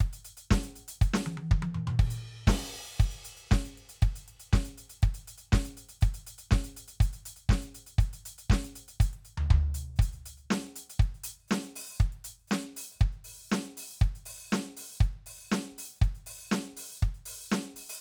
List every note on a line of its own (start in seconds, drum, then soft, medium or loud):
0.01 kick loud
0.01 closed hi-hat medium
0.14 closed hi-hat medium
0.25 closed hi-hat medium
0.38 closed hi-hat medium
0.51 kick loud
0.51 snare loud
0.64 closed hi-hat medium
0.76 closed hi-hat medium
0.89 closed hi-hat medium
1.02 closed hi-hat medium
1.02 kick loud
1.14 snare loud
1.27 high tom loud
1.38 high tom loud
1.52 kick loud
1.52 high tom medium
1.63 high tom loud
1.75 mid tom loud
1.88 mid tom loud
2.00 kick loud
2.00 ride medium
2.11 closed hi-hat medium
2.48 kick loud
2.48 snare loud
2.48 crash loud
2.76 closed hi-hat soft
2.85 closed hi-hat medium
3.00 closed hi-hat medium
3.00 kick loud
3.11 closed hi-hat soft
3.25 closed hi-hat medium
3.37 closed hi-hat soft
3.52 kick loud
3.52 snare loud
3.66 closed hi-hat soft
3.78 closed hi-hat soft
3.90 closed hi-hat medium
4.03 kick loud
4.03 closed hi-hat medium
4.16 closed hi-hat medium
4.29 closed hi-hat medium
4.40 closed hi-hat medium
4.53 kick loud
4.53 snare loud
4.65 closed hi-hat medium
4.78 closed hi-hat medium
4.90 closed hi-hat medium
5.03 kick loud
5.03 closed hi-hat medium
5.15 closed hi-hat medium
5.28 closed hi-hat medium
5.38 closed hi-hat medium
5.53 kick loud
5.53 snare loud
5.65 closed hi-hat medium
5.78 closed hi-hat medium
5.89 closed hi-hat medium
6.02 closed hi-hat medium
6.02 kick loud
6.15 closed hi-hat medium
6.27 closed hi-hat medium
6.39 closed hi-hat medium
6.52 kick loud
6.52 snare loud
6.64 closed hi-hat medium
6.77 closed hi-hat medium
6.88 closed hi-hat medium
7.01 closed hi-hat medium
7.01 kick loud
7.14 closed hi-hat medium
7.26 closed hi-hat medium
7.37 closed hi-hat medium
7.50 kick loud
7.50 snare loud
7.62 closed hi-hat medium
7.75 closed hi-hat medium
7.87 closed hi-hat medium
7.99 closed hi-hat medium
7.99 kick loud
8.14 closed hi-hat medium
8.26 closed hi-hat medium
8.39 closed hi-hat medium
8.50 kick loud
8.50 snare loud
8.64 closed hi-hat medium
8.76 closed hi-hat medium
8.89 closed hi-hat medium
9.01 closed hi-hat medium
9.01 kick loud
9.14 closed hi-hat soft
9.25 closed hi-hat soft
9.38 floor tom loud
9.51 kick loud
9.51 floor tom loud
9.75 open hi-hat medium
9.94 kick soft
9.94 hi-hat pedal soft
10.00 closed hi-hat medium
10.00 kick loud
10.13 closed hi-hat soft
10.26 closed hi-hat medium
10.38 closed hi-hat soft
10.51 snare loud
10.67 closed hi-hat soft
10.76 closed hi-hat loud
10.90 closed hi-hat medium
11.00 kick loud
11.00 closed hi-hat soft
11.15 closed hi-hat soft
11.24 closed hi-hat loud
11.39 open hi-hat soft
11.49 snare loud
11.49 hi-hat pedal soft
11.64 closed hi-hat soft
11.76 open hi-hat loud
11.92 open hi-hat soft
11.97 kick loud
11.97 hi-hat pedal soft
12.02 closed hi-hat soft
12.13 closed hi-hat soft
12.25 closed hi-hat loud
12.40 open hi-hat soft
12.48 snare loud
12.48 hi-hat pedal soft
12.63 closed hi-hat soft
12.77 open hi-hat loud
12.92 open hi-hat medium
12.96 kick soft
12.96 hi-hat pedal soft
13.02 kick loud
13.13 closed hi-hat soft
13.25 open hi-hat medium
13.40 open hi-hat soft
13.50 snare loud
13.50 hi-hat pedal soft
13.66 closed hi-hat soft
13.78 open hi-hat loud
13.92 open hi-hat soft
13.99 kick loud
13.99 hi-hat pedal soft
14.04 closed hi-hat soft
14.16 closed hi-hat soft
14.26 open hi-hat loud
14.41 open hi-hat soft
14.50 snare loud
14.50 hi-hat pedal soft
14.67 kick soft
14.67 closed hi-hat soft
14.77 open hi-hat loud
14.92 open hi-hat soft
14.99 kick loud
14.99 hi-hat pedal soft
15.04 closed hi-hat soft
15.14 closed hi-hat soft
15.27 open hi-hat loud
15.41 open hi-hat soft
15.51 snare loud
15.51 hi-hat pedal soft
15.67 closed hi-hat soft
15.72 kick soft
15.79 open hi-hat loud
15.94 hi-hat pedal soft
15.94 open hi-hat soft
16.02 kick loud
16.02 closed hi-hat soft
16.15 closed hi-hat soft
16.27 open hi-hat loud
16.41 open hi-hat soft
16.51 snare loud
16.51 hi-hat pedal soft
16.66 closed hi-hat soft
16.73 kick soft
16.77 open hi-hat loud
16.91 open hi-hat soft
16.98 hi-hat pedal soft
17.03 kick loud
17.03 closed hi-hat soft
17.15 closed hi-hat soft
17.26 open hi-hat loud
17.40 open hi-hat soft
17.51 snare loud
17.51 hi-hat pedal soft
17.64 closed hi-hat soft
17.75 open hi-hat loud
17.75 kick soft
17.90 open hi-hat loud
17.97 hi-hat pedal soft